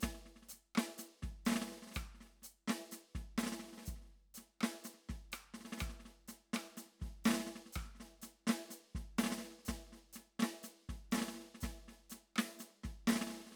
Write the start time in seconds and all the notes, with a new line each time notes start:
0.01 kick, snare, hi-hat pedal
0.15 snare
0.26 snare
0.36 snare
0.43 snare
0.47 snare, hi-hat pedal
0.53 snare
0.76 cross-stick, snare
0.98 snare, hi-hat pedal
1.23 kick, snare
1.46 snare, hi-hat pedal
1.49 snare
1.52 snare
1.56 snare
1.62 snare
1.68 snare
1.70 snare
1.72 snare
1.78 snare
1.88 snare
1.92 snare, hi-hat pedal
1.97 kick, cross-stick
2.15 snare
2.21 snare
2.26 snare
2.31 snare
2.35 snare
2.39 snare
2.43 snare, hi-hat pedal
2.68 snare
2.70 snare
2.82 snare
2.92 snare, hi-hat pedal
3.01 snare
3.07 snare
3.15 kick, snare
3.38 snare, hi-hat pedal
3.43 snare
3.47 snare
3.53 snare
3.60 snare
3.64 snare
3.68 snare
3.73 snare
3.78 snare
3.82 snare, hi-hat pedal
3.88 kick, snare
3.96 snare
4.02 snare
4.05 snare
4.16 snare
4.35 snare, hi-hat pedal
4.61 cross-stick, snare
4.84 snare, hi-hat pedal
4.94 snare
5.09 kick, snare
5.32 cross-stick, hi-hat pedal
5.54 snare
5.61 snare
5.65 snare
5.73 snare
5.78 cross-stick, snare, hi-hat pedal
5.82 kick
5.88 kick, snare
6.00 snare
6.06 snare
6.28 snare, hi-hat pedal
6.54 cross-stick, snare
6.77 snare, hi-hat pedal
6.86 snare
6.92 snare
7.00 snare
7.02 kick, snare
7.25 snare, hi-hat pedal
7.28 snare
7.31 snare
7.34 snare
7.37 snare
7.40 snare
7.47 snare
7.56 snare
7.66 snare
7.73 kick, cross-stick, hi-hat pedal
7.85 snare
7.95 snare
8.00 snare
8.08 snare
8.22 snare, hi-hat pedal
8.47 snare
8.50 snare
8.71 snare, hi-hat pedal
8.84 snare
8.95 kick, snare
9.19 snare, hi-hat pedal
9.24 snare
9.26 snare
9.31 snare
9.32 snare
9.38 snare
9.45 snare
9.51 snare
9.59 snare
9.65 snare, hi-hat pedal
9.69 kick, snare
9.79 snare
9.87 snare
9.92 snare
10.13 snare, hi-hat pedal
10.40 snare
10.43 snare
10.64 snare, hi-hat pedal
10.81 snare
10.89 kick, snare
11.12 snare, hi-hat pedal
11.15 snare
11.18 snare
11.22 snare
11.26 snare
11.28 snare
11.34 snare
11.36 snare
11.40 snare
11.46 snare
11.55 snare
11.61 kick, snare, hi-hat pedal
11.71 snare
11.78 snare
11.84 snare
11.88 snare
12.00 snare
12.03 snare
12.10 snare, hi-hat pedal
12.36 cross-stick, snare
12.59 snare, hi-hat pedal
12.70 snare
12.76 snare
12.84 kick, snare
13.08 snare, hi-hat pedal
13.09 snare
13.13 snare
13.16 snare
13.22 snare
13.27 snare
13.30 snare
13.34 snare
13.37 snare
13.41 snare
13.45 snare
13.52 snare